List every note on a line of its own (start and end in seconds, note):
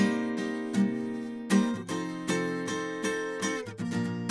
0.00 0.75 C3
0.00 0.40 G3
0.00 0.39 A#3
0.00 0.39 D#4
0.00 0.38 G4
0.00 0.38 C5
0.38 0.74 G3
0.38 0.75 A#3
0.38 1.48 D#4
0.38 1.26 G4
0.38 1.52 C5
0.75 1.50 C3
0.75 0.84 G3
0.75 1.51 A#3
1.51 1.91 C3
1.51 1.71 G3
1.51 1.76 A#3
1.51 1.73 D#4
1.51 1.73 G4
1.51 1.78 C5
1.76 1.90 F3
1.76 1.89 C5
1.89 2.28 C3
1.89 2.27 F3
1.89 2.29 C4
1.89 2.29 D#4
1.89 2.05 A4
1.89 2.30 C5
2.29 2.99 C3
2.29 3.02 F3
2.29 2.70 C4
2.29 2.70 D#4
2.29 2.68 A4
2.29 2.69 C5
2.69 3.04 C4
2.69 3.04 D#4
2.69 3.05 A4
2.69 3.05 C5
3.04 3.23 F3
3.04 3.44 C4
3.04 3.44 D#4
3.04 3.43 A4
3.04 3.42 C5
3.43 3.62 F3
3.43 3.66 C4
3.43 3.60 D#4
3.43 3.65 A4
3.43 3.65 C5
3.67 3.81 E4
3.67 3.76 A#4
3.79 3.86 A#2
3.79 3.93 F3
3.79 3.94 A#3
3.79 3.92 E4
3.79 3.92 A#4
3.92 4.06 A#2
3.92 4.31 F3
3.92 4.30 A#3
3.92 4.30 D4
3.92 4.05 F4
3.92 4.31 A#4
4.06 4.29 A#2
4.30 4.30 A#2